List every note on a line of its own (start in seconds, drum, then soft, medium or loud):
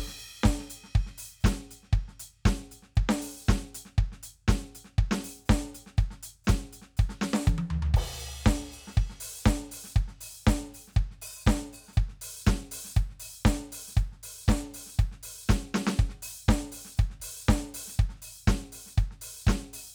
0.08 snare soft
0.15 kick soft
0.19 closed hi-hat medium
0.44 kick loud
0.44 snare loud
0.60 snare soft
0.71 closed hi-hat medium
0.84 snare soft
0.95 kick loud
0.95 closed hi-hat soft
1.07 snare soft
1.19 open hi-hat loud
1.41 kick loud
1.41 hi-hat pedal soft
1.46 closed hi-hat medium
1.46 snare loud
1.53 snare soft
1.72 closed hi-hat medium
1.84 snare soft
1.94 kick loud
1.94 closed hi-hat soft
2.09 snare soft
2.20 closed hi-hat loud
2.46 kick loud
2.46 snare loud
2.46 closed hi-hat soft
2.72 closed hi-hat medium
2.83 snare soft
2.96 kick loud
2.96 closed hi-hat soft
3.10 snare loud
3.23 open hi-hat loud
3.47 kick loud
3.47 snare loud
3.47 hi-hat pedal soft
3.51 closed hi-hat soft
3.57 snare soft
3.75 closed hi-hat loud
3.86 snare soft
3.99 kick loud
3.99 closed hi-hat soft
4.13 snare soft
4.24 closed hi-hat loud
4.49 closed hi-hat soft
4.49 kick loud
4.49 snare loud
4.76 closed hi-hat medium
4.85 snare soft
4.99 kick loud
4.99 closed hi-hat soft
5.12 snare loud
5.19 snare soft
5.25 open hi-hat loud
5.46 kick loud
5.46 snare loud
5.46 hi-hat pedal soft
5.53 closed hi-hat soft
5.75 closed hi-hat medium
5.87 snare soft
5.98 closed hi-hat soft
5.98 kick loud
6.11 snare soft
6.24 closed hi-hat loud
6.45 snare loud
6.45 hi-hat pedal soft
6.49 closed hi-hat medium
6.49 kick loud
6.74 closed hi-hat medium
6.83 snare soft
6.98 closed hi-hat medium
6.98 kick loud
7.10 snare medium
7.22 snare loud
7.34 snare loud
7.47 kick loud
7.47 hi-hat pedal medium
7.47 high tom loud
7.59 high tom loud
7.71 floor tom loud
7.83 floor tom loud
7.95 kick loud
7.95 crash loud
8.13 snare soft
8.20 closed hi-hat medium
8.45 kick loud
8.45 snare loud
8.45 hi-hat pedal soft
8.73 open hi-hat medium
8.88 snare soft
8.93 hi-hat pedal soft
8.98 kick loud
8.98 closed hi-hat soft
9.10 snare soft
9.21 open hi-hat loud
9.43 kick loud
9.43 snare loud
9.43 hi-hat pedal soft
9.48 closed hi-hat medium
9.72 open hi-hat loud
9.85 snare soft
9.93 hi-hat pedal soft
9.97 kick loud
9.97 closed hi-hat soft
10.09 snare soft
10.22 open hi-hat loud
10.44 kick loud
10.44 snare loud
10.44 hi-hat pedal soft
10.49 closed hi-hat medium
10.63 snare soft
10.75 open hi-hat medium
10.88 snare soft
10.93 kick loud
10.93 snare soft
10.93 hi-hat pedal soft
10.99 closed hi-hat soft
11.12 snare soft
11.22 open hi-hat loud
11.43 hi-hat pedal soft
11.47 kick loud
11.47 snare loud
11.47 closed hi-hat medium
11.56 snare soft
11.61 snare soft
11.63 snare soft
11.70 open hi-hat medium
11.70 snare soft
11.89 snare soft
11.94 kick loud
11.94 hi-hat pedal soft
11.98 closed hi-hat soft
12.09 snare soft
12.14 snare soft
12.22 open hi-hat loud
12.44 snare loud
12.44 closed hi-hat medium
12.44 hi-hat pedal soft
12.48 kick loud
12.55 snare soft
12.72 open hi-hat loud
12.85 snare soft
12.89 snare soft
12.89 hi-hat pedal soft
12.97 kick loud
12.97 closed hi-hat medium
13.11 snare soft
13.21 open hi-hat loud
13.42 kick loud
13.42 snare loud
13.42 hi-hat pedal soft
13.47 closed hi-hat medium
13.54 snare soft
13.59 snare soft
13.64 kick soft
13.73 open hi-hat loud
13.89 snare soft
13.94 kick loud
13.94 hi-hat pedal soft
13.99 closed hi-hat soft
14.13 snare soft
14.19 snare soft
14.24 open hi-hat loud
14.46 kick loud
14.46 snare loud
14.46 hi-hat pedal soft
14.50 closed hi-hat medium
14.75 open hi-hat loud
14.87 snare soft
14.96 kick loud
14.96 closed hi-hat medium
14.96 hi-hat pedal soft
15.12 snare soft
15.24 open hi-hat loud
15.48 closed hi-hat medium
15.48 kick loud
15.48 snare loud
15.48 hi-hat pedal soft
15.75 snare loud
15.88 snare loud
15.97 kick loud
15.97 closed hi-hat soft
15.97 hi-hat pedal soft
16.10 snare soft
16.23 open hi-hat loud
16.47 kick loud
16.47 snare loud
16.47 closed hi-hat soft
16.47 hi-hat pedal soft
16.73 open hi-hat loud
16.86 snare soft
16.94 closed hi-hat medium
16.94 hi-hat pedal soft
17.00 kick loud
17.11 snare soft
17.21 open hi-hat loud
17.21 kick soft
17.45 hi-hat pedal soft
17.49 kick loud
17.49 snare loud
17.49 closed hi-hat medium
17.56 snare soft
17.66 snare soft
17.75 open hi-hat loud
17.88 snare soft
17.93 snare soft
17.93 hi-hat pedal soft
17.99 closed hi-hat soft
17.99 kick loud
18.10 snare soft
18.15 snare soft
18.23 open hi-hat loud
18.45 kick loud
18.45 snare loud
18.45 hi-hat pedal soft
18.49 closed hi-hat medium
18.64 snare soft
18.73 open hi-hat medium
18.87 snare soft
18.93 hi-hat pedal soft
18.98 closed hi-hat soft
18.98 kick loud
19.12 snare soft
19.22 open hi-hat loud
19.45 kick loud
19.45 hi-hat pedal soft
19.49 closed hi-hat soft
19.49 snare loud
19.74 open hi-hat loud